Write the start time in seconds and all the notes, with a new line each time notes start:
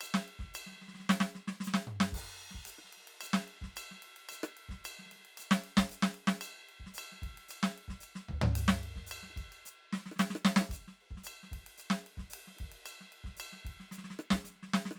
0.01 hi-hat pedal, ride bell
0.14 snare
0.28 ride
0.39 kick, snare
0.45 kick
0.54 hi-hat pedal, ride bell
0.67 snare
0.72 snare
0.76 snare
0.82 snare
0.88 snare
0.93 snare
1.00 snare
1.05 snare
1.09 snare, hi-hat pedal
1.21 snare
1.35 snare
1.48 snare
1.60 snare, hi-hat pedal
1.67 snare
1.74 snare
1.87 mid tom
2.00 snare
2.12 kick, crash
2.16 hi-hat pedal
2.51 kick, snare
2.66 hi-hat pedal, ride
2.79 cross-stick
2.84 snare
2.93 ride
2.97 snare
3.08 ride
3.21 hi-hat pedal, ride bell
3.33 snare
3.48 ride
3.62 kick, snare
3.76 hi-hat pedal, ride bell
3.91 snare
4.02 ride
4.17 ride
4.29 hi-hat pedal, ride bell
4.44 cross-stick
4.57 ride
4.69 kick, snare
4.84 hi-hat pedal, ride bell
4.99 snare
5.06 snare
5.12 snare, ride
5.16 snare
5.19 snare
5.25 ride
5.38 hi-hat pedal, ride bell
5.51 snare
5.64 ride
5.77 kick, snare
5.90 hi-hat pedal, ride
6.03 snare
6.15 ride
6.27 snare
6.41 hi-hat pedal, ride bell
6.69 ride
6.80 kick
6.87 snare
6.94 hi-hat pedal
6.98 ride bell
7.12 snare
7.22 kick, ride
7.28 kick
7.36 snare, ride
7.39 snare
7.49 hi-hat pedal, ride bell
7.63 snare
7.78 ride
7.88 kick, snare
8.01 hi-hat pedal, ride bell
8.16 snare
8.29 kick, floor tom
8.42 floor tom
8.56 hi-hat pedal, ride
8.68 snare
8.83 ride
8.96 kick, snare
9.07 hi-hat pedal
9.11 ride bell
9.23 snare
9.30 cross-stick
9.36 kick, ride bell
9.52 ride bell
9.66 hi-hat pedal
9.93 snare
10.06 snare
10.12 cross-stick
10.19 snare, hi-hat pedal
10.30 snare
10.35 cross-stick
10.45 snare
10.56 snare
10.61 cross-stick
10.69 kick, hi-hat pedal, ride bell
10.88 snare
11.01 ride
11.11 kick
11.17 snare
11.24 hi-hat pedal, ride bell
11.43 snare
11.49 kick, snare
11.53 snare, ride
11.56 snare
11.62 snare
11.67 ride
11.78 hi-hat pedal, ride bell
11.90 snare
12.07 ride
12.17 kick, snare
12.30 hi-hat pedal, ride
12.48 snare
12.57 kick, cross-stick, ride
12.72 ride
12.86 hi-hat pedal, ride bell
13.01 snare
13.12 ride
13.24 kick, snare
13.32 kick
13.37 hi-hat pedal, ride bell
13.53 snare
13.65 kick, ride
13.70 kick
13.80 snare
13.92 snare, hi-hat pedal
13.98 snare
14.04 snare
14.10 snare
14.19 cross-stick
14.31 kick, snare
14.35 cross-stick
14.44 snare, hi-hat pedal
14.50 snare
14.56 snare
14.63 snare
14.69 snare
14.74 snare
14.86 snare
14.91 cross-stick